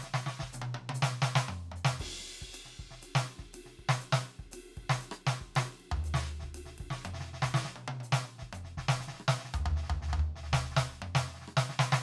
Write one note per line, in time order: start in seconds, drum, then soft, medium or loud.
0.01 snare medium
0.01 hi-hat pedal loud
0.14 snare loud
0.26 snare medium
0.39 kick soft
0.39 snare medium
0.50 kick soft
0.50 hi-hat pedal loud
0.54 high tom medium
0.62 high tom loud
0.74 high tom loud
0.89 high tom loud
0.94 hi-hat pedal loud
1.02 snare loud
1.22 snare loud
1.35 snare loud
1.48 mid tom loud
1.72 mid tom medium
1.76 hi-hat pedal medium
1.85 snare loud
2.00 kick medium
2.00 ride loud
2.06 kick soft
2.11 kick soft
2.19 cross-stick soft
2.19 hi-hat pedal soft
2.34 snare soft
2.38 kick soft
2.38 snare soft
2.52 hi-hat pedal medium
2.52 ride bell medium
2.65 snare soft
2.77 kick soft
2.77 ride soft
2.84 kick soft
2.91 snare soft
3.02 hi-hat pedal medium
3.02 ride medium
3.15 snare loud
3.28 ride soft
3.38 kick soft
3.38 snare soft
3.53 hi-hat pedal medium
3.53 ride medium
3.66 snare soft
3.79 kick soft
3.79 ride soft
3.89 snare loud
4.00 hi-hat pedal medium
4.00 ride medium
4.12 snare loud
4.26 ride soft
4.39 kick soft
4.51 hi-hat pedal loud
4.51 ride loud
4.77 kick soft
4.77 ride soft
4.83 kick soft
4.89 snare loud
5.01 hi-hat pedal medium
5.01 ride medium
5.11 cross-stick medium
5.22 hi-hat pedal soft
5.22 ride soft
5.27 snare loud
5.41 kick soft
5.55 snare loud
5.55 hi-hat pedal medium
5.55 ride medium
5.80 ride soft
5.91 floor tom loud
6.04 hi-hat pedal medium
6.04 ride medium
6.14 snare loud
6.26 hi-hat pedal soft
6.26 ride soft
6.40 kick soft
6.40 snare soft
6.54 hi-hat pedal medium
6.54 ride medium
6.66 snare soft
6.78 kick soft
6.78 ride medium
6.86 kick soft
6.90 snare medium
7.04 hi-hat pedal medium
7.04 mid tom loud
7.14 snare medium
7.20 snare medium
7.26 snare soft
7.33 snare medium
7.42 kick soft
7.42 snare loud
7.54 snare loud
7.54 hi-hat pedal medium
7.65 snare medium
7.76 high tom medium
7.88 high tom loud
8.00 hi-hat pedal medium
8.00 high tom medium
8.12 snare loud
8.24 hi-hat pedal soft
8.24 high tom medium
8.38 kick soft
8.38 snare soft
8.53 hi-hat pedal medium
8.53 mid tom medium
8.64 snare soft
8.77 kick soft
8.77 snare medium
8.88 snare loud
9.00 snare medium
9.00 hi-hat pedal medium
9.08 snare medium
9.13 snare soft
9.20 cross-stick medium
9.20 hi-hat pedal soft
9.28 snare loud
9.38 snare medium
9.45 snare medium
9.53 hi-hat pedal medium
9.53 floor tom loud
9.66 floor tom loud
9.76 snare soft
9.83 snare soft
9.90 floor tom loud
10.02 snare medium
10.08 snare soft
10.13 floor tom loud
10.19 floor tom medium
10.36 snare soft
10.43 snare soft
10.52 kick soft
10.52 snare loud
10.58 kick soft
10.65 snare soft
10.71 snare soft
10.77 kick soft
10.77 snare loud
10.88 snare soft
10.92 snare soft
11.02 mid tom loud
11.15 snare loud
11.27 snare soft
11.34 snare soft
11.39 snare soft
11.41 snare soft
11.48 cross-stick medium
11.52 cross-stick soft
11.57 snare loud
11.69 snare medium
11.79 snare loud
11.92 snare loud